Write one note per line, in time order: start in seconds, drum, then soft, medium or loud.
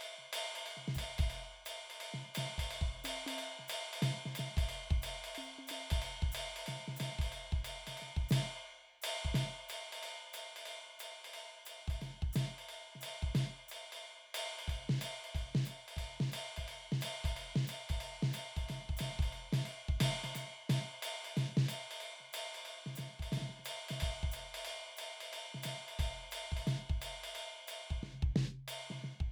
0.01 ride medium
0.18 snare soft
0.33 hi-hat pedal medium
0.33 ride loud
0.55 ride medium
0.66 ride medium
0.77 snare soft
0.88 snare medium
0.95 kick soft
0.95 hi-hat pedal medium
0.95 ride medium
1.18 kick medium
1.18 ride medium
1.30 ride medium
1.66 hi-hat pedal loud
1.66 ride medium
1.90 ride medium
2.00 ride medium
2.14 snare soft
2.35 snare soft
2.35 hi-hat pedal loud
2.35 ride loud
2.58 kick soft
2.58 ride medium
2.71 ride medium
2.81 kick soft
3.04 hi-hat pedal loud
3.04 high tom soft
3.04 ride loud
3.27 high tom medium
3.27 ride medium
3.38 ride medium
3.59 snare soft
3.68 hi-hat pedal loud
3.68 ride loud
3.93 ride medium
4.02 snare medium
4.02 ride medium
4.26 snare soft
4.35 snare soft
4.35 hi-hat pedal loud
4.35 ride medium
4.57 kick soft
4.57 ride medium
4.69 ride medium
4.91 kick medium
5.02 hi-hat pedal loud
5.02 ride medium
5.24 hi-hat pedal soft
5.24 ride medium
5.35 high tom soft
5.35 ride medium
5.43 hi-hat pedal soft
5.59 high tom soft
5.67 hi-hat pedal loud
5.67 high tom soft
5.67 ride medium
5.90 kick soft
5.90 ride medium
6.02 ride medium
6.22 kick soft
6.32 hi-hat pedal loud
6.32 ride loud
6.56 ride medium
6.66 snare soft
6.66 ride medium
6.88 snare soft
6.96 hi-hat pedal loud
6.96 ride medium
7.01 snare soft
7.19 kick soft
7.19 ride medium
7.32 ride medium
7.52 kick soft
7.65 hi-hat pedal medium
7.65 ride medium
7.87 snare soft
7.87 ride medium
7.97 ride medium
8.02 snare soft
8.17 kick soft
8.29 snare medium
8.29 hi-hat pedal medium
8.29 ride loud
9.02 hi-hat pedal loud
9.02 ride loud
9.25 kick soft
9.35 snare medium
9.35 ride medium
9.69 hi-hat pedal medium
9.69 ride medium
9.93 ride medium
10.03 ride medium
10.33 hi-hat pedal loud
10.33 ride medium
10.56 ride medium
10.66 ride medium
10.99 hi-hat pedal loud
10.99 ride medium
11.25 ride medium
11.34 ride medium
11.66 hi-hat pedal loud
11.66 ride medium
11.88 kick soft
11.88 ride medium
12.02 snare soft
12.02 ride soft
12.22 kick soft
12.33 snare medium
12.33 hi-hat pedal loud
12.33 ride medium
12.58 ride medium
12.69 ride medium
12.95 snare soft
13.01 hi-hat pedal loud
13.01 ride medium
13.23 kick soft
13.35 snare medium
13.35 ride medium
13.68 hi-hat pedal loud
13.68 ride medium
13.92 ride medium
14.34 hi-hat pedal loud
14.34 ride loud
14.59 ride medium
14.68 kick soft
14.68 ride medium
14.90 snare medium
15.01 hi-hat pedal loud
15.01 ride medium
15.24 ride soft
15.35 kick soft
15.35 ride medium
15.55 snare medium
15.65 hi-hat pedal medium
15.65 ride medium
15.88 ride medium
15.97 kick soft
15.97 ride medium
16.20 snare medium
16.32 hi-hat pedal medium
16.32 ride medium
16.57 kick soft
16.57 ride medium
16.68 ride medium
16.92 snare medium
17.01 hi-hat pedal loud
17.01 ride loud
17.24 kick soft
17.24 ride medium
17.37 ride medium
17.56 snare medium
17.67 hi-hat pedal loud
17.67 ride medium
17.89 kick soft
17.89 ride medium
18.01 ride medium
18.23 snare medium
18.33 hi-hat pedal medium
18.33 ride medium
18.57 kick soft
18.57 ride soft
18.69 snare soft
18.69 ride medium
18.89 kick soft
18.97 snare soft
18.97 hi-hat pedal loud
18.97 ride medium
19.19 kick soft
19.19 ride medium
19.33 ride soft
19.53 snare medium
19.53 ride medium
19.66 ride medium
19.89 kick soft
20.00 snare medium
20.00 ride loud
20.24 snare soft
20.24 ride medium
20.35 snare soft
20.35 hi-hat pedal loud
20.35 ride medium
20.70 snare medium
20.70 ride medium
21.03 hi-hat pedal loud
21.03 ride loud
21.25 ride medium
21.37 snare medium
21.37 ride medium
21.57 snare medium
21.69 hi-hat pedal loud
21.69 ride medium
21.91 ride medium
22.01 ride medium
22.20 snare soft
22.33 hi-hat pedal loud
22.33 ride loud
22.55 ride medium
22.65 ride medium
22.86 snare soft
22.96 snare soft
22.96 hi-hat pedal loud
22.96 ride medium
23.20 kick soft
23.20 ride medium
23.32 snare medium
23.32 ride medium
23.37 snare soft
23.42 snare soft
23.50 snare soft
23.59 snare soft
23.65 hi-hat pedal loud
23.65 ride medium
23.89 snare soft
23.89 ride medium
24.00 kick soft
24.00 ride medium
24.23 kick soft
24.32 hi-hat pedal loud
24.32 ride medium
24.54 ride medium
24.65 ride medium
24.97 hi-hat pedal medium
24.97 ride medium
25.21 ride medium
25.33 ride medium
25.55 snare soft
25.63 snare soft
25.63 hi-hat pedal loud
25.63 ride medium
25.88 ride medium
25.99 kick soft
25.99 ride medium
26.31 hi-hat pedal medium
26.31 ride medium
26.52 kick soft
26.57 ride medium
26.67 snare medium
26.67 ride medium
26.90 kick soft
27.02 hi-hat pedal loud
27.02 ride medium
27.24 ride medium
27.35 ride medium
27.68 hi-hat pedal loud
27.68 ride medium
27.91 kick soft
28.03 snare soft
28.03 floor tom medium
28.23 kick soft
28.36 snare medium
28.36 floor tom medium
28.68 hi-hat pedal medium
28.68 ride medium
28.90 snare soft
28.90 floor tom medium
29.04 snare soft
29.04 floor tom soft
29.20 kick soft